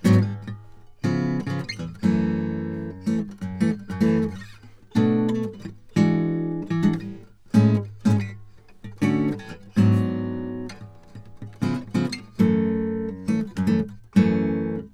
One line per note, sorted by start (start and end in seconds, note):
0.06 0.23 G#2
0.06 0.23 F#3
0.06 0.25 B3
0.06 0.24 D4
1.05 1.43 C#3
1.05 1.44 F3
1.05 1.46 B3
1.05 1.43 E4
1.48 1.69 C#3
1.48 1.68 F3
1.48 1.67 B3
1.81 1.99 E2
2.04 3.22 F#2
2.04 2.97 E3
2.04 2.96 A3
2.04 2.86 C#4
3.08 3.26 E3
3.08 3.24 A3
3.08 3.25 C#4
3.43 3.77 F#2
3.62 3.75 E3
3.62 3.79 A3
3.62 3.75 C#4
3.91 4.40 F#2
4.02 4.35 E3
4.02 4.36 A3
4.02 4.29 C#4
4.96 5.51 B2
4.96 5.53 A3
4.96 5.35 D4
4.96 5.33 F#4
5.97 6.66 E3
5.97 6.66 G#3
5.97 6.71 D4
5.97 6.58 F#4
6.72 7.01 E3
6.84 7.00 G#3
6.84 7.01 D4
6.84 6.99 F#4
7.55 7.79 A2
7.55 7.86 G#3
7.55 7.84 C#4
7.55 7.89 E4
8.06 8.18 A2
8.06 8.23 G#3
8.06 8.22 C#4
8.06 8.23 E4
9.03 9.38 D3
9.03 9.38 A3
9.03 9.36 C#4
9.03 9.38 F#4
9.78 10.68 G#2
9.78 10.71 F#3
9.78 10.74 B3
9.78 10.57 D4
11.63 11.81 C#3
11.63 11.81 F3
11.63 11.84 B3
11.63 11.85 E4
11.96 12.13 C#3
11.96 12.13 F3
11.96 12.14 B3
11.96 12.12 E4
12.40 13.45 F#2
12.40 12.88 E3
12.40 13.16 A3
12.40 12.87 C#4
13.29 13.51 E3
13.29 13.51 A3
13.29 13.45 C#4
13.59 13.85 F#2
13.68 13.88 E3
13.68 13.92 A3
13.68 13.88 C#4
14.18 14.83 F#2
14.18 14.94 E3
14.18 14.87 A3
14.18 14.85 C#4